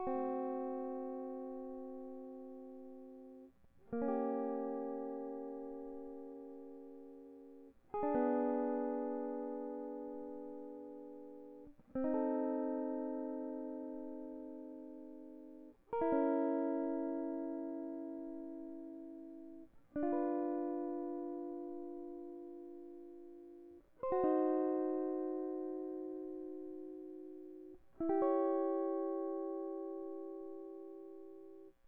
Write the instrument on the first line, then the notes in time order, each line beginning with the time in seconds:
electric guitar
0.00 F#4
0.08 C4
0.16 A3
3.92 A#3
4.02 C#4
4.10 G4
7.94 G#4
8.05 D4
8.14 B3
11.96 C4
12.05 D#4
12.14 A4
15.93 A#4
16.02 E4
16.11 C#4
19.96 D4
20.04 F4
20.13 B4
24.03 C5
24.13 F#4
24.24 D#4
28.00 E4
28.11 G4
28.22 C#5